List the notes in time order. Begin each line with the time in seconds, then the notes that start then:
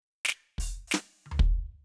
0.25 snare
0.29 snare
0.58 open hi-hat, kick
0.87 snare, hi-hat pedal
0.94 snare
1.26 high tom
1.31 floor tom
1.39 kick